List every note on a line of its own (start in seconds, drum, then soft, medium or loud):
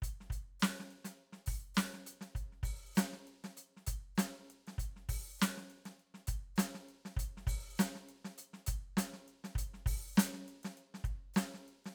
0.02 closed hi-hat medium
0.02 kick soft
0.21 snare soft
0.30 open hi-hat soft
0.30 kick soft
0.60 closed hi-hat medium
0.60 snare loud
0.60 hi-hat pedal medium
0.80 snare soft
0.91 closed hi-hat soft
1.05 closed hi-hat soft
1.05 snare soft
1.19 closed hi-hat soft
1.33 snare soft
1.46 open hi-hat medium
1.46 kick soft
1.75 closed hi-hat medium
1.75 snare medium
1.75 hi-hat pedal medium
1.94 snare soft
2.07 closed hi-hat medium
2.21 snare soft
2.21 closed hi-hat soft
2.35 closed hi-hat soft
2.35 kick soft
2.52 snare soft
2.63 open hi-hat medium
2.63 kick soft
2.95 closed hi-hat medium
2.95 snare loud
2.95 hi-hat pedal medium
3.13 snare soft
3.27 closed hi-hat soft
3.44 snare soft
3.44 closed hi-hat soft
3.57 closed hi-hat soft
3.77 snare soft
3.87 open hi-hat medium
3.87 kick soft
4.15 closed hi-hat medium
4.15 snare medium
4.15 hi-hat pedal soft
4.39 snare soft
4.50 closed hi-hat soft
4.67 snare soft
4.67 closed hi-hat soft
4.78 closed hi-hat medium
4.78 kick soft
4.96 snare soft
5.09 open hi-hat medium
5.09 kick soft
5.39 closed hi-hat medium
5.39 snare loud
5.39 hi-hat pedal medium
5.57 snare soft
5.70 closed hi-hat soft
5.86 snare soft
5.86 closed hi-hat soft
6.00 closed hi-hat soft
6.14 snare soft
6.27 closed hi-hat medium
6.27 kick soft
6.56 closed hi-hat medium
6.56 snare loud
6.56 hi-hat pedal soft
6.75 snare soft
6.89 closed hi-hat soft
7.05 snare soft
7.05 closed hi-hat soft
7.17 closed hi-hat medium
7.17 kick medium
7.37 snare soft
7.47 open hi-hat medium
7.47 kick medium
7.78 closed hi-hat medium
7.78 snare loud
7.78 hi-hat pedal medium
7.95 snare soft
8.09 closed hi-hat soft
8.25 snare soft
8.25 closed hi-hat soft
8.38 closed hi-hat soft
8.54 snare soft
8.67 closed hi-hat medium
8.67 kick medium
8.97 closed hi-hat medium
8.97 snare medium
9.13 snare soft
9.28 closed hi-hat soft
9.44 snare soft
9.44 closed hi-hat soft
9.55 closed hi-hat medium
9.55 kick soft
9.74 snare soft
9.86 open hi-hat medium
9.86 kick medium
10.15 snare loud
10.15 hi-hat pedal medium
10.19 closed hi-hat loud
10.34 snare soft
10.48 closed hi-hat soft
10.63 snare medium
10.63 closed hi-hat soft
10.77 closed hi-hat soft
10.94 snare soft
11.04 kick soft
11.04 closed hi-hat soft
11.34 closed hi-hat medium
11.34 snare loud
11.34 hi-hat pedal soft
11.54 snare soft
11.68 closed hi-hat soft
11.85 snare soft
11.85 closed hi-hat soft